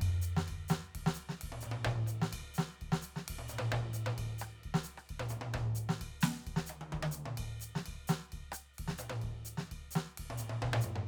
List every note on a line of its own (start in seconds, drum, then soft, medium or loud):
0.01 kick medium
0.01 ride bell medium
0.08 kick soft
0.22 hi-hat pedal medium
0.22 ride soft
0.37 snare medium
0.48 kick soft
0.48 ride bell medium
0.69 snare medium
0.69 hi-hat pedal medium
0.95 kick soft
0.95 ride medium
1.07 snare medium
1.14 hi-hat pedal medium
1.18 ride soft
1.29 snare medium
1.41 kick soft
1.41 ride medium
1.50 kick soft
1.50 mid tom medium
1.61 hi-hat pedal medium
1.61 mid tom medium
1.72 mid tom medium
1.85 kick soft
1.85 mid tom loud
2.07 hi-hat pedal medium
2.07 mid tom soft
2.22 snare medium
2.33 kick soft
2.33 ride bell medium
2.40 kick soft
2.54 hi-hat pedal medium
2.58 snare medium
2.81 kick soft
2.81 ride bell soft
2.92 snare medium
3.02 hi-hat pedal medium
3.02 ride medium
3.16 snare medium
3.28 kick soft
3.28 ride loud
3.36 kick soft
3.36 mid tom medium
3.49 hi-hat pedal medium
3.49 mid tom medium
3.59 mid tom loud
3.72 kick soft
3.72 mid tom loud
3.94 hi-hat pedal medium
3.94 mid tom soft
4.06 mid tom loud
4.18 kick soft
4.18 ride bell medium
4.25 kick soft
4.39 cross-stick medium
4.39 hi-hat pedal medium
4.64 kick soft
4.64 ride bell soft
4.74 snare medium
4.84 hi-hat pedal medium
4.84 ride soft
4.98 cross-stick medium
5.09 kick soft
5.09 ride bell soft
5.20 mid tom medium
5.29 hi-hat pedal medium
5.29 mid tom medium
5.41 mid tom medium
5.54 kick soft
5.54 mid tom loud
5.60 kick soft
5.60 mid tom soft
5.75 hi-hat pedal medium
5.89 snare medium
6.01 kick soft
6.01 ride bell medium
6.21 snare loud
6.21 hi-hat pedal medium
6.42 hi-hat pedal soft
6.47 kick soft
6.47 ride bell soft
6.57 snare medium
6.67 hi-hat pedal medium
6.67 high tom medium
6.81 high tom medium
6.92 kick soft
6.92 high tom medium
7.00 kick soft
7.00 high tom medium
7.12 hi-hat pedal medium
7.26 mid tom medium
7.38 kick soft
7.38 ride bell medium
7.60 hi-hat pedal medium
7.60 ride soft
7.76 snare medium
7.86 kick soft
7.86 ride bell medium
8.08 snare medium
8.08 hi-hat pedal medium
8.32 kick soft
8.32 ride bell medium
8.52 cross-stick medium
8.52 hi-hat pedal loud
8.74 hi-hat pedal soft
8.79 kick soft
8.79 ride medium
8.87 kick soft
8.87 snare medium
8.98 hi-hat pedal medium
8.98 mid tom medium
9.10 mid tom medium
9.22 kick soft
9.22 ride bell soft
9.45 hi-hat pedal medium
9.58 snare medium
9.72 kick soft
9.72 ride bell medium
9.91 hi-hat pedal medium
9.96 snare medium
10.18 kick soft
10.18 ride medium
10.30 mid tom medium
10.38 hi-hat pedal medium
10.38 mid tom medium
10.50 mid tom medium
10.62 kick soft
10.62 mid tom loud
10.70 kick soft
10.70 mid tom loud
10.81 floor tom medium
10.81 hi-hat pedal medium
10.96 floor tom loud